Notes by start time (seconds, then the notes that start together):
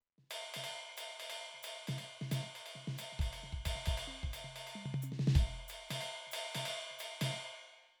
0.18 snare
0.24 snare
0.30 hi-hat pedal, ride
0.54 snare, ride
0.64 ride
0.97 hi-hat pedal, ride
1.20 ride
1.30 ride
1.54 snare
1.63 hi-hat pedal, ride
1.87 snare, ride
1.98 ride
2.21 snare
2.31 snare, hi-hat pedal, ride
2.55 ride
2.66 ride
2.75 snare
2.87 snare
2.98 hi-hat pedal, ride
3.12 snare
3.19 kick, ride
3.33 ride
3.43 snare
3.52 kick
3.65 kick, hi-hat pedal, ride
3.75 snare
3.86 kick, ride
3.97 ride
4.07 high tom
4.23 kick
4.33 hi-hat pedal, ride
4.44 floor tom
4.56 ride
4.67 ride
4.75 mid tom
4.86 floor tom
4.94 floor tom
5.02 hi-hat pedal, high tom
5.12 snare
5.19 snare
5.27 snare
5.35 kick, ride
5.68 hi-hat pedal, ride
5.89 snare, hi-hat pedal, ride
6.01 ride
6.27 snare
6.31 hi-hat pedal, ride
6.51 hi-hat pedal, ride
6.55 snare
6.65 ride
6.90 snare
6.99 hi-hat pedal, ride
7.21 snare, ride